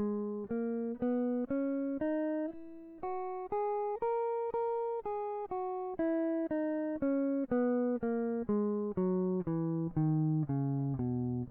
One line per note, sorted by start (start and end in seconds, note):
0.00 0.48 G#3
0.52 0.98 A#3
1.03 1.47 B3
1.51 2.01 C#4
2.01 2.50 D#4
2.53 3.00 E4
3.03 3.52 F#4
3.52 3.99 G#4
4.02 4.54 A#4
4.54 5.03 A#4
5.06 5.49 G#4
5.52 5.97 F#4
5.99 6.49 E4
6.51 7.00 D#4
7.03 7.48 C#4
7.52 8.00 B3
8.03 8.46 A#3
8.50 8.96 G#3
8.98 9.44 F#3
9.48 9.91 E3
9.98 10.47 D#3
10.51 10.99 C#3
11.01 11.47 B2